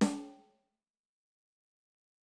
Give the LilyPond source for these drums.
\new DrumStaff \drummode { \time 4/4 \tempo 4 = 108 <sn hh>4 r4 r4 r4 | }